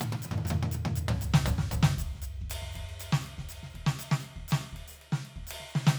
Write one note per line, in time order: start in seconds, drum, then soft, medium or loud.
0.01 high tom loud
0.01 percussion loud
0.13 high tom loud
0.23 mid tom medium
0.23 percussion loud
0.32 mid tom loud
0.39 mid tom medium
0.46 mid tom medium
0.46 percussion loud
0.51 mid tom loud
0.64 mid tom loud
0.72 mid tom medium
0.72 percussion loud
0.86 mid tom loud
0.96 floor tom medium
0.96 percussion loud
1.09 floor tom loud
1.22 floor tom medium
1.22 percussion loud
1.35 snare loud
1.46 kick soft
1.46 percussion loud
1.46 floor tom loud
1.59 snare medium
1.71 kick soft
1.71 percussion loud
1.71 floor tom medium
1.84 snare loud
1.91 snare soft
1.99 kick medium
1.99 ride bell medium
1.99 percussion loud
2.11 kick soft
2.16 snare soft
2.23 snare soft
2.23 percussion medium
2.23 ride soft
2.42 kick soft
2.51 ride loud
2.51 percussion loud
2.63 snare soft
2.67 snare soft
2.71 snare soft
2.71 percussion soft
2.76 kick soft
2.76 ride medium
2.90 ride bell medium
3.01 ride medium
3.01 percussion loud
3.13 snare loud
3.23 percussion soft
3.27 ride medium
3.39 kick soft
3.39 snare soft
3.50 ride bell medium
3.50 percussion medium
3.64 snare soft
3.71 percussion soft
3.75 kick soft
3.75 ride soft
3.87 snare loud
4.00 ride bell medium
4.00 percussion loud
4.12 snare loud
4.21 percussion soft
4.26 ride medium
4.37 kick soft
4.49 ride medium
4.49 percussion loud
4.53 snare loud
4.62 snare soft
4.70 kick soft
4.70 percussion soft
4.77 ride medium
4.89 percussion medium
5.02 ride medium
5.13 snare medium
5.26 ride medium
5.37 kick soft
5.44 snare soft
5.44 percussion medium
5.52 ride loud
5.61 snare soft
5.69 percussion soft
5.76 snare medium
5.88 snare loud